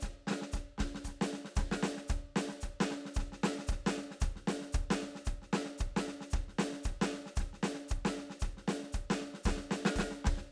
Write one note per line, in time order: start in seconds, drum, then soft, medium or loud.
0.01 kick medium
0.01 snare soft
0.01 hi-hat pedal medium
0.28 snare medium
0.31 snare medium
0.42 snare soft
0.52 kick medium
0.52 snare soft
0.52 hi-hat pedal medium
0.78 kick medium
0.78 snare medium
0.95 snare soft
1.05 kick soft
1.05 snare soft
1.05 hi-hat pedal medium
1.22 snare loud
1.33 snare soft
1.45 snare soft
1.56 kick medium
1.56 snare medium
1.56 hi-hat pedal medium
1.72 snare medium
1.83 snare loud
1.97 snare soft
2.08 kick medium
2.08 snare soft
2.08 hi-hat pedal medium
2.36 snare loud
2.49 snare soft
2.61 kick soft
2.61 snare soft
2.61 hi-hat pedal medium
2.81 snare loud
2.91 snare soft
3.06 snare soft
3.14 kick medium
3.14 snare soft
3.14 hi-hat pedal medium
3.33 snare soft
3.44 snare loud
3.59 snare soft
3.68 kick medium
3.68 snare soft
3.68 hi-hat pedal medium
3.87 snare loud
3.97 snare soft
4.11 snare soft
4.21 kick medium
4.21 snare soft
4.21 hi-hat pedal medium
4.36 snare soft
4.48 snare loud
4.62 snare soft
4.73 kick medium
4.73 snare soft
4.73 hi-hat pedal medium
4.91 snare loud
5.03 snare soft
5.15 snare soft
5.25 kick medium
5.25 snare soft
5.25 hi-hat pedal medium
5.42 snare soft
5.53 snare loud
5.65 snare soft
5.78 kick medium
5.78 snare soft
5.78 hi-hat pedal medium
5.97 snare loud
6.08 snare soft
6.21 snare soft
6.31 kick medium
6.31 snare soft
6.31 hi-hat pedal medium
6.49 snare soft
6.59 snare loud
6.73 snare soft
6.84 kick medium
6.84 snare soft
6.84 hi-hat pedal medium
7.02 snare loud
7.14 snare soft
7.26 snare soft
7.36 kick medium
7.36 snare soft
7.36 hi-hat pedal medium
7.53 snare soft
7.63 snare loud
7.75 snare soft
7.89 kick medium
7.89 snare soft
7.89 hi-hat pedal medium
8.05 snare loud
8.18 snare soft
8.30 snare soft
8.40 kick medium
8.40 snare soft
8.40 hi-hat pedal medium
8.58 snare soft
8.68 snare loud
8.83 snare soft
8.93 kick medium
8.93 snare soft
8.93 hi-hat pedal medium
9.11 snare loud
9.21 snare soft
9.34 snare soft
9.44 kick medium
9.44 snare medium
9.44 hi-hat pedal medium
9.57 snare soft
9.71 snare medium
9.86 snare loud
9.96 kick medium
9.96 snare medium
9.96 hi-hat pedal medium
10.11 snare soft
10.25 kick medium
10.25 snare medium
10.38 snare soft